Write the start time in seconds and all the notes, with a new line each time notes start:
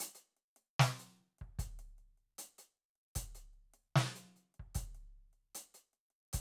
0.00 closed hi-hat
0.15 closed hi-hat
0.37 closed hi-hat
0.56 closed hi-hat
0.80 snare
0.99 closed hi-hat
1.39 kick, closed hi-hat
1.59 closed hi-hat, kick
1.79 closed hi-hat
1.98 closed hi-hat
2.18 closed hi-hat
2.38 closed hi-hat
2.58 closed hi-hat
2.77 closed hi-hat
2.96 closed hi-hat
3.15 closed hi-hat, kick
3.35 closed hi-hat
3.53 closed hi-hat
3.74 closed hi-hat
3.96 snare
4.16 closed hi-hat
4.36 closed hi-hat
4.54 closed hi-hat
4.60 kick
4.75 closed hi-hat, kick
4.95 closed hi-hat
5.33 closed hi-hat
5.55 closed hi-hat
5.74 closed hi-hat
5.93 closed hi-hat
6.10 closed hi-hat
6.33 closed hi-hat, kick